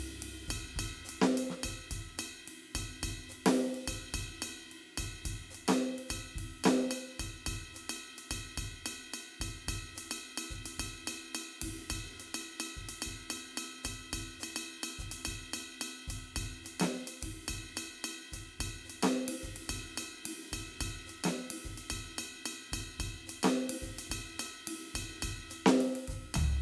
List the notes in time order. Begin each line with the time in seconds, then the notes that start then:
0.23 ride
0.48 kick, hi-hat pedal, ride bell
0.54 kick
0.77 kick, ride bell
0.85 kick
1.05 hi-hat pedal
1.10 ride bell
1.22 snare
1.38 ride bell
1.51 snare
1.64 kick, hi-hat pedal, ride bell
1.91 kick, snare, ride bell
2.00 kick
2.19 hi-hat pedal, ride bell
2.48 ride
2.75 kick, hi-hat pedal, ride bell
3.04 kick, ride bell
3.12 kick
3.30 hi-hat pedal, ride
3.46 snare, closed hi-hat, ride
3.75 ride
3.88 kick, hi-hat pedal, ride bell
4.14 kick, ride bell
4.23 kick
4.43 hi-hat pedal, ride bell
4.72 ride
4.98 kick, hi-hat pedal, ride bell
5.05 kick
5.26 kick, ride bell
5.32 kick
5.35 kick
5.51 hi-hat pedal
5.55 ride bell
5.69 snare, ride bell
5.99 ride
6.09 kick, hi-hat pedal, ride bell
6.36 kick, ride
6.44 kick
6.65 snare, hi-hat pedal, ride bell
6.92 ride bell
7.20 kick, hi-hat pedal, ride bell
7.47 kick, ride bell
7.53 kick
7.56 kick
7.75 hi-hat pedal, ride bell
7.90 ride bell
8.19 ride bell
8.31 kick, hi-hat pedal, ride bell
8.58 kick, ride bell
8.66 kick
8.86 hi-hat pedal, ride bell
9.14 ride bell
9.41 kick, hi-hat pedal, ride bell
9.68 kick, ride bell
9.75 kick
9.96 hi-hat pedal, ride bell
10.12 ride bell
10.38 ride bell
10.51 kick, hi-hat pedal
10.66 ride bell
10.79 kick, ride bell
11.08 hi-hat pedal, ride bell
11.35 ride bell
11.62 kick, hi-hat pedal, ride
11.91 kick, ride bell
12.20 hi-hat pedal, ride bell
12.35 ride bell
12.61 ride bell
12.77 kick, hi-hat pedal
12.89 ride bell
13.03 kick, ride bell
13.31 hi-hat pedal, ride bell
13.58 ride bell
13.84 kick, hi-hat pedal, ride bell
14.14 kick, ride bell
14.41 hi-hat pedal, ride bell
14.57 ride bell
14.84 ride bell
14.99 kick, hi-hat pedal
15.12 ride bell
15.26 kick, ride bell
15.54 hi-hat pedal, ride bell
15.82 ride bell
16.08 kick, hi-hat pedal, ride bell
16.37 kick, ride bell
16.46 kick
16.65 hi-hat pedal, ride bell
16.80 snare, ride bell
17.08 ride bell
17.22 kick, hi-hat pedal, ride
17.49 kick, ride bell
17.77 hi-hat pedal, ride bell
18.05 ride bell
18.33 kick, hi-hat pedal, ride bell
18.60 kick, ride bell
18.66 kick
18.86 hi-hat pedal
18.90 ride bell
19.03 snare, ride bell
19.29 ride
19.43 kick, hi-hat pedal
19.57 ride
19.70 kick, ride bell
19.98 hi-hat pedal, ride bell
20.26 ride
20.53 kick, hi-hat pedal, ride bell
20.81 kick, ride bell
20.87 kick
21.07 hi-hat pedal, ride bell
21.25 snare, ride bell
21.51 ride
21.65 kick, hi-hat pedal
21.78 ride bell
21.91 kick, ride bell
22.19 hi-hat pedal, ride bell
22.46 ride bell
22.73 kick, hi-hat pedal, ride bell
23.00 kick, ride bell
23.09 kick
23.27 hi-hat pedal, ride bell
23.44 snare, ride bell
23.70 ride
23.83 kick, hi-hat pedal
23.99 ride bell
24.11 kick, ride bell
24.40 hi-hat pedal, ride bell
24.68 ride
24.95 kick, hi-hat pedal, ride bell
25.23 kick, ride bell
25.30 kick
25.51 hi-hat pedal, ride bell
25.67 snare
25.81 ride
25.96 ride
26.08 kick, hi-hat pedal, ride, floor tom
26.14 kick
26.35 kick, floor tom, ride bell